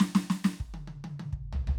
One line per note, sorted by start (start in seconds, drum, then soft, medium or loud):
0.01 snare loud
0.01 hi-hat pedal soft
0.15 snare loud
0.30 snare loud
0.44 snare loud
0.44 hi-hat pedal medium
0.61 kick medium
0.74 high tom loud
0.88 high tom medium
1.05 high tom loud
1.20 high tom loud
1.33 kick soft
1.53 floor tom loud
1.68 floor tom loud